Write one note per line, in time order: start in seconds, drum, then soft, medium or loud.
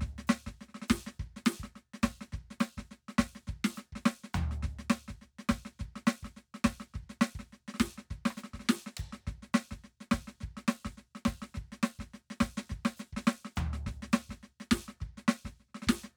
0.01 kick medium
0.01 snare soft
0.09 kick soft
0.13 kick soft
0.18 snare soft
0.27 snare loud
0.27 hi-hat pedal medium
0.47 kick soft
0.47 snare soft
0.61 snare soft
0.69 snare soft
0.75 snare soft
0.82 snare soft
0.88 kick soft
0.88 snare loud
0.88 hi-hat pedal medium
0.96 kick soft
0.99 kick soft
1.07 snare soft
1.19 kick soft
1.19 snare soft
1.26 kick soft
1.36 snare soft
1.45 snare loud
1.45 hi-hat pedal medium
1.60 kick soft
1.60 snare soft
1.76 snare soft
1.94 snare soft
2.03 kick soft
2.03 snare loud
2.03 hi-hat pedal medium
2.09 kick soft
2.12 kick soft
2.21 snare soft
2.32 kick soft
2.32 snare soft
2.40 kick soft
2.50 snare soft
2.60 snare loud
2.60 hi-hat pedal medium
2.77 kick soft
2.77 snare soft
2.91 snare soft
3.08 snare soft
3.18 kick soft
3.18 snare loud
3.18 hi-hat pedal medium
3.35 snare soft
3.47 kick soft
3.47 snare soft
3.55 kick soft
3.64 snare loud
3.75 snare soft
3.75 hi-hat pedal medium
3.92 kick soft
3.92 snare soft
4.24 snare soft
4.34 kick soft
4.34 floor tom loud
4.34 hi-hat pedal medium
4.42 kick soft
4.45 kick soft
4.51 snare soft
4.63 kick medium
4.63 snare soft
4.70 kick soft
4.79 snare soft
4.90 snare loud
4.90 hi-hat pedal medium
5.08 kick soft
5.08 snare soft
5.22 snare soft
5.39 snare soft
5.49 kick soft
5.49 snare loud
5.49 hi-hat pedal medium
5.60 kick soft
5.65 snare soft
5.79 kick soft
5.79 snare soft
5.96 snare soft
6.07 snare loud
6.07 hi-hat pedal medium
6.23 kick soft
6.23 snare soft
6.37 snare soft
6.54 snare soft
6.64 kick soft
6.64 snare loud
6.64 hi-hat pedal medium
6.72 kick soft
6.74 kick soft
6.80 snare soft
6.94 kick soft
6.94 snare soft
7.03 kick soft
7.09 snare soft
7.21 snare loud
7.21 hi-hat pedal medium
7.35 kick soft
7.39 snare soft
7.53 snare soft
7.68 snare soft
7.74 snare soft
7.79 kick soft
7.79 snare loud
7.79 hi-hat pedal medium
7.86 kick soft
7.98 snare soft
8.10 kick soft
8.10 snare soft
8.17 kick soft
8.25 snare loud
8.31 cross-stick medium
8.37 snare soft
8.37 hi-hat pedal medium
8.44 snare soft
8.51 snare soft
8.53 kick soft
8.53 snare soft
8.60 snare soft
8.64 snare soft
8.69 snare loud
8.86 snare soft
8.97 kick soft
8.97 hi-hat pedal medium
8.97 floor tom loud
9.06 kick soft
9.08 kick soft
9.13 snare soft
9.27 kick soft
9.27 snare soft
9.34 kick soft
9.38 kick soft
9.43 snare soft
9.54 snare loud
9.54 hi-hat pedal medium
9.71 kick soft
9.71 snare soft
9.84 snare soft
10.00 snare soft
10.11 kick soft
10.11 snare loud
10.11 hi-hat pedal medium
10.20 kick soft
10.22 kick soft
10.27 snare soft
10.41 kick soft
10.41 snare soft
10.57 snare soft
10.68 snare loud
10.68 hi-hat pedal medium
10.85 kick soft
10.85 snare medium
10.97 snare soft
11.15 snare soft
11.25 kick soft
11.25 snare loud
11.25 hi-hat pedal medium
11.34 kick soft
11.42 snare soft
11.54 kick soft
11.54 snare soft
11.63 kick soft
11.72 snare soft
11.83 snare loud
11.83 hi-hat pedal medium
11.99 kick soft
11.99 snare soft
12.14 snare soft
12.30 snare soft
12.41 kick soft
12.41 hi-hat pedal medium
12.51 kick soft
12.57 snare medium
12.70 kick soft
12.70 snare soft
12.78 kick soft
12.85 snare loud
12.97 snare soft
12.97 hi-hat pedal medium
13.13 kick soft
13.13 snare medium
13.27 snare loud
13.45 snare soft
13.56 kick soft
13.56 floor tom loud
13.56 hi-hat pedal medium
13.67 kick soft
13.73 snare soft
13.86 kick soft
13.86 snare medium
13.93 kick soft
13.97 kick soft
14.02 snare soft
14.12 snare loud
14.12 hi-hat pedal medium
14.29 kick soft
14.29 snare soft
14.43 snare soft
14.60 snare soft
14.71 kick soft
14.71 snare loud
14.71 hi-hat pedal medium
14.78 kick soft
14.88 snare soft
15.00 kick soft
15.00 snare soft
15.09 kick soft
15.17 snare soft
15.28 snare loud
15.28 hi-hat pedal medium
15.45 kick soft
15.45 snare soft
15.60 snare soft
15.69 snare soft
15.75 snare soft
15.82 snare soft
15.87 kick soft
15.87 snare loud
15.87 hi-hat pedal medium
16.04 snare soft